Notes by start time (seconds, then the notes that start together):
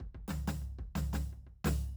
0.01 kick
0.15 kick
0.28 snare, floor tom
0.48 snare, floor tom
0.62 kick
0.79 kick
0.95 snare, floor tom
1.13 snare, floor tom
1.33 kick
1.47 kick
1.64 snare, floor tom